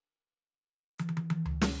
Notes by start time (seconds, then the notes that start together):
0.98 hi-hat pedal, high tom
1.09 high tom
1.17 high tom
1.30 high tom
1.46 floor tom
1.62 snare, crash